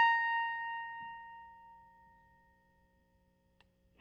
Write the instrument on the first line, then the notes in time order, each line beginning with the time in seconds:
electric guitar
0.00 A#5